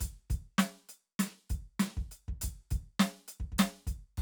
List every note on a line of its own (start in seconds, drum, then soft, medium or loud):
0.01 closed hi-hat loud
0.01 kick medium
0.30 closed hi-hat medium
0.30 kick medium
0.59 closed hi-hat loud
0.59 snare loud
0.89 closed hi-hat medium
1.20 closed hi-hat loud
1.20 snare loud
1.50 closed hi-hat medium
1.50 kick medium
1.80 closed hi-hat medium
1.80 snare loud
1.97 kick medium
2.12 closed hi-hat medium
2.28 kick medium
2.42 closed hi-hat loud
2.42 kick medium
2.71 closed hi-hat medium
2.71 kick medium
3.00 closed hi-hat medium
3.00 snare loud
3.28 closed hi-hat medium
3.40 kick medium
3.52 kick soft
3.59 closed hi-hat loud
3.59 snare loud
3.87 closed hi-hat medium
3.87 kick medium
4.18 kick medium
4.18 crash medium